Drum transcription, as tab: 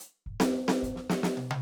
Hi-hat   |x--x--x-----|
Snare    |---o-o-ooo--|
High tom |----------oo|
Kick     |--g---g-----|